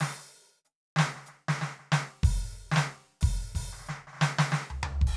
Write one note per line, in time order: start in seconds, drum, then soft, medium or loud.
0.00 open hi-hat loud
0.00 snare loud
0.17 snare soft
0.65 hi-hat pedal soft
0.96 snare loud
0.99 snare loud
1.16 snare soft
1.26 snare soft
1.26 hi-hat pedal loud
1.48 snare loud
1.61 snare medium
1.79 snare soft
1.92 snare loud
2.23 open hi-hat loud
2.23 kick loud
2.72 snare loud
2.76 snare loud
3.21 open hi-hat loud
3.21 kick loud
3.55 open hi-hat loud
3.55 kick medium
3.72 snare soft
3.79 snare soft
3.83 snare soft
3.83 hi-hat pedal loud
3.89 snare medium
4.07 snare soft
4.13 snare soft
4.17 snare soft
4.20 snare soft
4.20 snare loud
4.39 snare loud
4.50 snare loud
4.50 hi-hat pedal loud
4.70 floor tom medium
4.83 floor tom loud
5.01 kick medium
5.07 ride loud